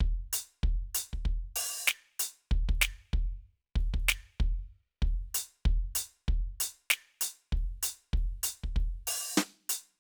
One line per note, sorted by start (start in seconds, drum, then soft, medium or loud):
0.01 kick medium
0.33 closed hi-hat loud
0.64 kick medium
0.95 closed hi-hat loud
1.14 kick soft
1.26 kick medium
1.56 open hi-hat loud
1.88 snare loud
1.88 hi-hat pedal medium
2.20 closed hi-hat loud
2.52 kick medium
2.69 kick medium
2.76 crash soft
2.82 snare loud
3.14 kick medium
3.76 kick medium
3.76 snare soft
3.76 crash soft
3.81 ride soft
3.94 kick medium
4.00 crash soft
4.00 ride soft
4.09 snare loud
4.40 kick medium
5.03 kick medium
5.08 crash soft
5.35 closed hi-hat loud
5.66 kick medium
5.96 closed hi-hat loud
6.29 kick medium
6.61 open hi-hat loud
6.91 snare loud
6.91 hi-hat pedal medium
7.21 closed hi-hat loud
7.53 kick medium
7.58 crash soft
7.83 closed hi-hat loud
8.14 kick medium
8.18 crash soft
8.44 closed hi-hat loud
8.64 kick soft
8.77 kick medium
8.81 crash soft
9.08 open hi-hat loud
9.38 snare loud
9.38 hi-hat pedal medium
9.70 closed hi-hat loud